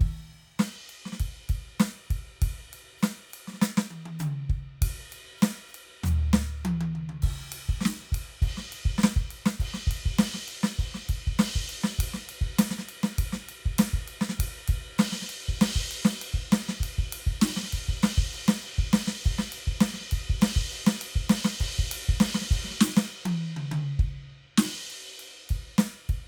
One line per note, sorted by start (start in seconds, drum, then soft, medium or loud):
0.01 kick medium
0.01 crash soft
0.59 snare loud
0.59 ride medium
0.90 ride medium
1.06 snare soft
1.13 snare medium
1.20 kick medium
1.20 ride medium
1.49 kick medium
1.49 ride medium
1.80 snare loud
1.80 ride medium
2.11 kick medium
2.11 ride medium
2.42 kick medium
2.42 ride loud
2.73 ride medium
2.99 hi-hat pedal soft
3.03 snare loud
3.03 ride medium
3.30 hi-hat pedal soft
3.34 ride medium
3.48 snare soft
3.54 snare soft
3.62 snare loud
3.62 hi-hat pedal loud
3.78 snare loud
3.91 high tom medium
4.06 high tom medium
4.20 hi-hat pedal medium
4.20 mid tom loud
4.50 kick medium
4.82 kick medium
4.82 ride loud
5.10 hi-hat pedal soft
5.10 ride medium
5.39 hi-hat pedal soft
5.43 snare loud
5.43 ride medium
5.69 hi-hat pedal soft
5.75 ride medium
5.89 snare soft
5.92 snare soft
5.97 snare soft
6.04 floor tom loud
6.04 hi-hat pedal loud
6.33 snare loud
6.65 high tom loud
6.81 high tom medium
6.95 mid tom medium
7.09 mid tom medium
7.23 kick medium
7.23 crash medium
7.52 ride loud
7.69 kick medium
7.81 snare medium
7.86 snare loud
8.12 kick medium
8.12 ride medium
8.42 kick medium
8.42 ride medium
8.58 snare medium
8.73 ride medium
8.86 kick medium
8.98 snare medium
9.04 snare loud
9.17 kick medium
9.31 ride medium
9.46 snare loud
9.60 kick medium
9.60 ride medium
9.74 snare medium
9.87 kick medium
9.87 ride medium
10.06 kick medium
10.19 snare loud
10.19 ride medium
10.34 snare soft
10.48 ride medium
10.64 snare loud
10.79 kick medium
10.79 ride medium
10.95 snare medium
11.09 kick medium
11.09 ride medium
11.27 kick medium
11.39 snare loud
11.39 ride loud
11.56 kick medium
11.70 ride medium
11.84 snare medium
11.99 kick medium
11.99 ride loud
12.14 snare medium
12.29 ride medium
12.42 kick medium
12.59 snare loud
12.59 ride loud
12.71 snare medium
12.79 snare medium
12.89 ride medium
13.04 snare medium
13.19 kick medium
13.19 ride loud
13.33 snare medium
13.49 ride medium
13.66 kick medium
13.79 snare loud
13.79 ride loud
13.94 kick medium
14.08 ride medium
14.21 snare medium
14.29 snare medium
14.40 kick medium
14.40 ride loud
14.68 kick medium
14.68 ride medium
14.99 snare loud
14.99 ride loud
15.12 snare medium
15.22 snare soft
15.30 ride medium
15.49 kick medium
15.62 snare loud
15.62 ride loud
15.76 kick medium
15.91 ride medium
16.05 snare loud
16.22 ride medium
16.34 kick medium
16.52 snare loud
16.52 ride medium
16.69 snare medium
16.81 kick soft
16.81 ride medium
16.99 kick medium
17.13 ride loud
17.27 kick medium
17.42 snare loud
17.42 ride loud
17.57 snare medium
17.63 snare soft
17.73 kick soft
17.73 ride medium
17.89 kick medium
18.03 snare loud
18.03 ride loud
18.18 kick medium
18.33 ride medium
18.48 snare loud
18.63 ride medium
18.79 kick medium
18.93 snare loud
18.93 ride medium
19.08 snare medium
19.25 kick medium
19.25 ride medium
19.39 snare medium
19.53 ride medium
19.68 kick medium
19.81 snare loud
19.81 ride medium
19.94 snare soft
20.01 snare soft
20.12 kick medium
20.12 ride medium
20.30 kick medium
20.42 snare loud
20.42 ride loud
20.56 kick medium
20.71 ride medium
20.87 snare loud
21.02 ride loud
21.16 kick medium
21.30 snare loud
21.30 ride loud
21.45 snare loud
21.60 kick medium
21.60 ride loud
21.79 kick medium
21.92 ride loud
22.09 kick medium
22.21 snare loud
22.21 ride loud
22.35 snare medium
22.41 snare soft
22.51 kick medium
22.51 ride medium
22.64 snare soft
22.71 snare soft
22.81 snare loud
22.81 hi-hat pedal loud
22.97 snare loud
23.26 high tom loud
23.57 mid tom loud
23.72 mid tom loud
23.99 kick medium
24.58 snare loud
24.58 ride loud
24.91 ride soft
25.20 ride medium
25.50 kick medium
25.50 ride medium
25.79 snare loud
25.79 ride medium
26.09 kick medium
26.09 ride soft